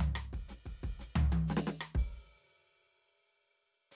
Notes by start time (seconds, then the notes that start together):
0.01 floor tom, hi-hat pedal
0.16 cross-stick
0.34 kick, ride
0.49 snare, hi-hat pedal
0.66 kick, ride
0.84 kick, ride
1.00 snare, hi-hat pedal
1.16 floor tom
1.33 high tom
1.48 snare, hi-hat pedal
1.57 snare
1.68 snare
1.81 cross-stick
1.95 open hi-hat, kick
3.92 hi-hat pedal